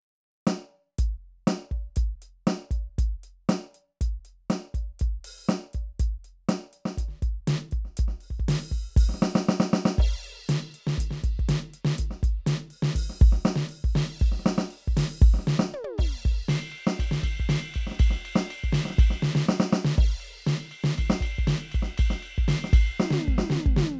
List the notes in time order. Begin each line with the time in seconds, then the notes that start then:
0.47 closed hi-hat, snare
0.98 closed hi-hat, kick
1.08 kick
1.47 closed hi-hat, snare
1.71 kick
1.96 closed hi-hat, kick
2.22 closed hi-hat
2.47 closed hi-hat, snare
2.71 kick, closed hi-hat
2.98 closed hi-hat, kick
3.23 closed hi-hat
3.49 closed hi-hat, snare
3.74 closed hi-hat
4.01 closed hi-hat, kick
4.25 closed hi-hat
4.50 closed hi-hat, snare
4.74 kick, closed hi-hat
4.99 kick, closed hi-hat
5.24 open hi-hat
5.48 closed hi-hat, snare, hi-hat pedal
5.73 kick, closed hi-hat
5.99 closed hi-hat, kick
6.24 closed hi-hat
6.49 closed hi-hat, snare
6.73 open hi-hat
6.85 snare
6.97 closed hi-hat, kick
7.08 snare
7.22 kick, closed hi-hat
7.47 closed hi-hat, snare
7.71 kick, closed hi-hat
7.85 snare
7.97 closed hi-hat, kick
8.08 snare
8.20 open hi-hat
8.30 kick
8.39 kick
8.48 open hi-hat, snare
8.71 kick, open hi-hat
8.96 open hi-hat, kick
9.09 snare
9.14 snare
9.22 snare
9.35 snare
9.49 snare
9.60 snare
9.73 snare
9.85 snare
9.98 kick, hi-hat pedal, crash
10.24 closed hi-hat
10.49 closed hi-hat, snare
10.74 closed hi-hat
10.87 snare
10.98 closed hi-hat, kick
11.11 snare
11.24 closed hi-hat, kick
11.39 kick
11.49 closed hi-hat, snare
11.73 closed hi-hat
11.85 snare
11.98 closed hi-hat, kick
12.11 snare
12.23 closed hi-hat, kick
12.46 closed hi-hat, snare
12.70 open hi-hat
12.82 snare
12.95 open hi-hat, kick
13.10 snare
13.21 open hi-hat, kick
13.32 snare
13.45 snare
13.56 snare
13.69 open hi-hat
13.84 kick
13.95 snare, crash
14.19 open hi-hat, kick
14.32 snare
14.39 snare
14.46 snare
14.58 snare
14.70 open hi-hat
14.88 kick
14.97 open hi-hat, snare
15.21 open hi-hat, kick
15.34 snare
15.39 snare
15.47 snare
15.54 hi-hat pedal
15.59 snare
15.73 high tom
15.84 high tom
15.98 kick, hi-hat pedal, crash
16.25 kick
16.48 snare, hi-hat pedal, ride
16.72 hi-hat pedal, ride
16.87 snare
16.99 kick, ride
17.11 snare
17.23 kick, ride
17.40 kick
17.49 snare, ride
17.74 kick, ride
17.87 snare
17.91 snare
17.99 kick, ride
18.10 snare
18.18 snare
18.25 ride
18.36 snare
18.50 ride
18.64 kick
18.73 snare, ride
18.85 snare
18.90 snare
18.98 kick, ride
19.10 snare
19.22 snare
19.35 snare
19.49 snare
19.60 snare
19.73 snare
19.85 snare
19.97 kick, crash
20.20 ride
20.47 snare, ride
20.71 ride
20.84 snare
20.98 kick, ride
21.10 snare
21.21 kick, ride
21.38 kick
21.47 snare, ride
21.71 kick, ride
21.82 snare
21.94 snare, ride
21.99 kick
22.10 snare
22.22 ride
22.38 kick
22.48 snare, ride
22.64 snare
22.73 kick, ride
22.99 snare, floor tom
23.11 snare, floor tom
23.28 kick
23.38 snare, floor tom
23.50 snare, floor tom
23.66 kick
23.76 snare, floor tom